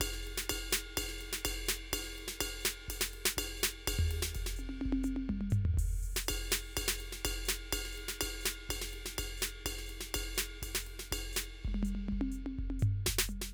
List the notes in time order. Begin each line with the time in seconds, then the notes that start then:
0.01 kick, ride bell
0.14 snare
0.23 hi-hat pedal
0.27 ride
0.38 snare
0.50 kick, ride bell
0.71 snare, hi-hat pedal
0.98 kick, ride bell
1.04 kick
1.09 snare
1.19 hi-hat pedal, ride
1.33 snare
1.45 kick, ride bell
1.66 snare, hi-hat pedal
1.93 kick, ride bell
1.99 kick
2.04 snare
2.14 hi-hat pedal
2.19 ride
2.28 snare
2.41 kick, ride bell
2.47 kick
2.61 hi-hat pedal
2.66 snare
2.89 kick, ride bell
2.95 kick
3.02 snare
3.10 hi-hat pedal
3.14 ride
3.26 snare
3.38 kick, ride bell
3.44 kick
3.58 hi-hat pedal
3.64 snare
3.88 kick, ride bell
3.94 kick
3.99 floor tom
4.08 hi-hat pedal, ride
4.23 snare
4.35 kick, ride bell
4.43 kick, snare
4.57 hi-hat pedal, high tom
4.82 high tom
4.86 kick
4.93 kick, high tom
5.04 hi-hat pedal, high tom
5.17 high tom
5.30 kick, mid tom
5.37 kick
5.41 mid tom
5.51 hi-hat pedal, floor tom
5.66 floor tom
5.75 kick, floor tom
5.79 crash
5.93 kick
6.03 hi-hat pedal
6.17 snare
6.26 hi-hat pedal, ride bell
6.31 kick
6.36 kick
6.51 snare, hi-hat pedal
6.77 kick, ride bell
6.89 snare
6.98 hi-hat pedal, ride
7.13 snare
7.25 kick, ride bell
7.32 kick
7.46 snare, hi-hat pedal
7.73 kick, ride bell
7.79 kick
7.85 snare
7.93 hi-hat pedal
7.98 ride
8.09 snare
8.21 kick, ride bell
8.41 hi-hat pedal
8.46 snare
8.70 kick, ride bell
8.76 kick
8.82 snare
8.89 hi-hat pedal
8.94 ride
9.06 snare
9.19 kick, ride bell
9.25 kick
9.38 hi-hat pedal
9.43 snare
9.66 kick, ride bell
9.79 snare
9.87 hi-hat pedal, ride
10.01 snare
10.15 kick, ride bell
10.22 kick
10.35 snare, hi-hat pedal
10.63 kick, ride bell
10.69 kick
10.75 snare
10.83 hi-hat pedal
10.87 ride
11.00 snare
11.12 kick, ride bell
11.19 kick
11.33 snare, hi-hat pedal
11.65 kick, mid tom
11.72 kick, mid tom
11.77 kick
11.83 hi-hat pedal, mid tom
11.96 mid tom
12.09 kick, mid tom
12.19 kick, high tom
12.32 hi-hat pedal
12.47 high tom
12.59 kick
12.67 kick, high tom
12.80 hi-hat pedal, floor tom
13.07 kick, snare
13.15 kick, snare
13.28 hi-hat pedal, mid tom
13.42 snare